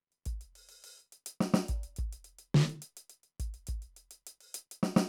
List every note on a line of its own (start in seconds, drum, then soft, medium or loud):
0.12 open hi-hat soft
0.25 closed hi-hat medium
0.25 kick soft
0.41 closed hi-hat soft
0.55 open hi-hat soft
0.69 open hi-hat medium
0.84 open hi-hat medium
0.99 closed hi-hat soft
1.12 closed hi-hat medium
1.26 closed hi-hat loud
1.40 snare medium
1.54 snare loud
1.63 hi-hat pedal soft
1.68 closed hi-hat medium
1.68 kick soft
1.83 closed hi-hat medium
1.96 closed hi-hat medium
1.96 kick soft
2.12 closed hi-hat medium
2.24 closed hi-hat medium
2.38 closed hi-hat medium
2.54 snare loud
2.69 closed hi-hat soft
2.82 closed hi-hat medium
2.97 closed hi-hat medium
3.09 closed hi-hat medium
3.23 closed hi-hat soft
3.40 closed hi-hat medium
3.40 kick soft
3.54 closed hi-hat soft
3.67 closed hi-hat medium
3.67 kick soft
3.82 closed hi-hat soft
3.96 closed hi-hat medium
4.11 closed hi-hat medium
4.27 closed hi-hat medium
4.40 open hi-hat soft
4.54 closed hi-hat loud
4.71 closed hi-hat medium
4.83 snare medium
4.96 snare loud